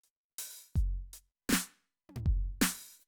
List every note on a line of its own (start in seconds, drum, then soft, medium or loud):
0.04 closed hi-hat soft
0.38 open hi-hat loud
0.72 kick medium
0.72 hi-hat pedal soft
0.76 closed hi-hat soft
1.13 closed hi-hat medium
1.49 snare medium
1.53 snare loud
2.09 high tom soft
2.16 floor tom medium
2.26 kick medium
2.61 open hi-hat loud
2.61 snare loud
2.99 hi-hat pedal soft